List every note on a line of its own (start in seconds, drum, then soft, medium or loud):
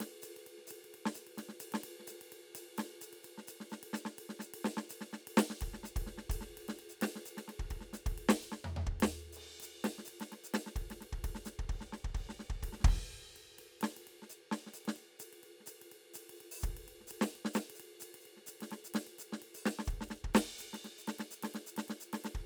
0.01 snare soft
0.01 ride medium
0.23 hi-hat pedal medium
0.23 ride medium
0.37 ride soft
0.58 snare soft
0.68 hi-hat pedal medium
0.68 ride medium
0.85 ride soft
0.95 ride soft
1.06 snare medium
1.15 hi-hat pedal medium
1.15 ride medium
1.27 ride soft
1.36 snare soft
1.36 hi-hat pedal soft
1.36 ride medium
1.49 snare soft
1.60 hi-hat pedal medium
1.60 ride medium
1.73 snare medium
1.73 ride medium
1.84 ride medium
2.00 snare soft
2.08 snare soft
2.08 hi-hat pedal medium
2.08 ride medium
2.22 ride medium
2.33 ride medium
2.55 hi-hat pedal medium
2.55 ride medium
2.77 snare medium
2.77 hi-hat pedal soft
2.77 ride medium
3.02 hi-hat pedal medium
3.02 ride medium
3.14 ride soft
3.23 hi-hat pedal soft
3.23 ride medium
3.38 snare soft
3.48 hi-hat pedal medium
3.48 ride medium
3.61 snare soft
3.70 snare soft
3.70 hi-hat pedal soft
3.84 ride medium
3.94 snare medium
3.94 hi-hat pedal medium
4.06 snare soft
4.17 hi-hat pedal soft
4.17 ride medium
4.30 snare soft
4.42 hi-hat pedal medium
4.54 ride medium
4.63 snare medium
4.63 hi-hat pedal soft
4.78 snare medium
4.90 hi-hat pedal medium
4.90 ride medium
5.01 snare soft
5.12 snare soft
5.12 hi-hat pedal soft
5.28 ride medium
5.37 snare loud
5.37 hi-hat pedal medium
5.51 snare soft
5.59 kick medium
5.59 hi-hat pedal soft
5.59 ride medium
5.74 snare soft
5.84 snare soft
5.84 hi-hat pedal medium
5.97 kick medium
5.97 ride medium
6.07 snare soft
6.18 snare soft
6.30 kick medium
6.30 hi-hat pedal medium
6.30 ride medium
6.42 snare soft
6.58 ride medium
6.69 snare medium
6.69 ride soft
6.80 ride soft
6.90 hi-hat pedal medium
7.02 snare medium
7.02 ride medium
7.16 snare soft
7.26 hi-hat pedal medium
7.26 ride medium
7.38 snare soft
7.38 ride soft
7.49 snare soft
7.49 ride soft
7.60 kick soft
7.71 kick soft
7.71 ride soft
7.81 snare soft
7.94 snare soft
7.94 hi-hat pedal medium
8.07 kick medium
8.07 ride medium
8.18 ride medium
8.29 snare loud
8.42 hi-hat pedal soft
8.42 ride soft
8.52 snare soft
8.65 floor tom medium
8.77 floor tom medium
8.87 kick medium
9.01 snare loud
9.01 ride medium
9.33 hi-hat pedal medium
9.33 ride medium
9.61 hi-hat pedal medium
9.61 ride medium
9.83 snare medium
9.83 hi-hat pedal soft
9.83 ride medium
9.99 snare soft
10.06 hi-hat pedal medium
10.06 ride medium
10.21 snare soft
10.21 ride medium
10.33 snare soft
10.33 ride soft
10.44 hi-hat pedal medium
10.54 snare medium
10.54 ride medium
10.67 snare soft
10.76 kick medium
10.76 ride medium
10.91 snare soft
10.91 ride soft
11.01 snare soft
11.01 ride soft
11.13 kick soft
11.25 kick medium
11.25 ride medium
11.36 snare soft
11.46 snare soft
11.46 hi-hat pedal medium
11.60 kick medium
11.70 kick medium
11.70 ride soft
11.81 snare soft
11.93 snare soft
12.05 kick medium
12.15 kick medium
12.15 ride soft
12.30 snare soft
12.40 snare soft
12.50 kick medium
12.63 kick soft
12.63 ride medium
12.73 snare soft
12.81 snare soft
12.85 kick loud
12.85 snare soft
12.85 crash medium
13.37 ride soft
13.59 ride medium
13.82 snare medium
13.82 ride medium
13.97 ride medium
14.08 ride soft
14.23 snare soft
14.30 hi-hat pedal medium
14.30 ride soft
14.52 snare medium
14.52 ride soft
14.67 snare soft
14.74 hi-hat pedal medium
14.74 ride soft
14.86 snare medium
14.86 ride soft
14.97 ride soft
15.20 hi-hat pedal medium
15.20 ride medium
15.33 ride soft
15.44 ride soft
15.61 snare soft
15.67 hi-hat pedal medium
15.67 ride medium
15.82 ride soft
15.92 ride soft
16.14 hi-hat pedal medium
16.14 ride medium
16.30 ride medium
16.36 hi-hat pedal soft
16.41 ride soft
16.52 open hi-hat medium
16.61 kick medium
16.61 hi-hat pedal medium
16.61 ride medium
16.77 ride medium
16.83 hi-hat pedal soft
16.89 ride soft
17.01 snare soft
17.08 hi-hat pedal medium
17.08 ride medium
17.22 snare medium
17.22 ride medium
17.29 hi-hat pedal soft
17.36 ride soft
17.45 snare medium
17.54 snare medium
17.54 hi-hat pedal medium
17.54 ride medium
17.71 ride medium
17.75 hi-hat pedal soft
18.00 snare soft
18.00 hi-hat pedal medium
18.00 ride medium
18.15 ride medium
18.21 hi-hat pedal soft
18.26 ride soft
18.37 snare soft
18.47 hi-hat pedal medium
18.47 ride medium
18.61 snare soft
18.61 ride medium
18.71 snare soft
18.71 ride soft
18.85 hi-hat pedal medium
18.95 snare medium
18.95 ride medium
19.07 ride soft
19.19 hi-hat pedal medium
19.19 ride soft
19.33 snare medium
19.42 ride medium
19.55 hi-hat pedal medium
19.55 ride soft
19.66 snare medium
19.66 ride medium
19.79 snare medium
19.86 kick medium
19.86 hi-hat pedal soft
19.91 ride soft
20.01 snare soft
20.01 ride soft
20.10 snare soft
20.10 ride soft
20.25 kick soft
20.35 snare loud
20.35 ride medium
20.59 hi-hat pedal medium
20.59 ride soft
20.74 snare soft
20.74 ride soft
20.85 snare soft
20.99 hi-hat pedal medium
21.08 snare medium
21.08 ride medium
21.19 snare soft
21.19 ride medium
21.31 hi-hat pedal medium
21.43 snare medium
21.43 ride medium
21.55 snare soft
21.55 ride soft
21.67 hi-hat pedal medium
21.77 snare medium
21.77 ride medium
21.89 snare medium
21.89 ride soft
22.01 hi-hat pedal medium
22.14 snare medium
22.14 ride medium
22.25 snare soft
22.25 ride medium
22.35 kick soft